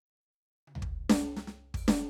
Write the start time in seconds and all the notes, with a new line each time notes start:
0.67 high tom
0.75 floor tom
0.82 kick
1.10 snare
1.37 snare
1.47 snare
1.74 open hi-hat, kick
1.88 snare, hi-hat pedal